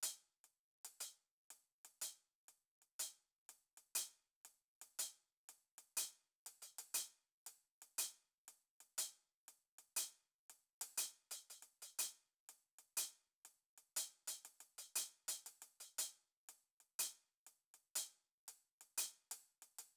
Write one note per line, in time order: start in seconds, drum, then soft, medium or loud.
0.03 closed hi-hat loud
0.44 closed hi-hat soft
0.85 closed hi-hat medium
1.00 closed hi-hat medium
1.50 closed hi-hat soft
1.85 closed hi-hat soft
2.01 closed hi-hat medium
2.48 closed hi-hat soft
2.82 closed hi-hat soft
2.99 closed hi-hat loud
3.49 closed hi-hat soft
3.77 closed hi-hat soft
3.95 closed hi-hat loud
4.45 closed hi-hat soft
4.81 closed hi-hat soft
4.99 closed hi-hat loud
5.49 closed hi-hat soft
5.78 closed hi-hat soft
5.97 closed hi-hat loud
6.46 closed hi-hat medium
6.62 closed hi-hat soft
6.78 closed hi-hat medium
6.94 closed hi-hat loud
7.46 closed hi-hat medium
7.82 closed hi-hat soft
7.98 closed hi-hat loud
8.48 closed hi-hat soft
8.80 closed hi-hat soft
8.98 closed hi-hat loud
9.48 closed hi-hat soft
9.78 closed hi-hat soft
9.96 closed hi-hat loud
10.50 closed hi-hat soft
10.81 closed hi-hat medium
10.97 closed hi-hat loud
11.31 closed hi-hat medium
11.50 closed hi-hat medium
11.62 closed hi-hat soft
11.82 closed hi-hat medium
11.99 closed hi-hat loud
12.49 closed hi-hat soft
12.79 closed hi-hat soft
12.97 closed hi-hat loud
13.45 closed hi-hat soft
13.78 closed hi-hat soft
13.96 closed hi-hat loud
14.27 closed hi-hat medium
14.45 closed hi-hat soft
14.60 closed hi-hat soft
14.78 closed hi-hat medium
14.96 closed hi-hat loud
15.28 closed hi-hat loud
15.46 closed hi-hat medium
15.62 closed hi-hat soft
15.80 closed hi-hat medium
15.98 closed hi-hat loud
16.49 closed hi-hat soft
16.80 closed hi-hat soft
16.99 closed hi-hat loud
17.47 closed hi-hat soft
17.74 closed hi-hat soft
17.95 closed hi-hat loud
18.48 closed hi-hat medium
18.81 closed hi-hat soft
18.98 closed hi-hat loud
19.31 closed hi-hat medium
19.62 closed hi-hat soft
19.79 closed hi-hat medium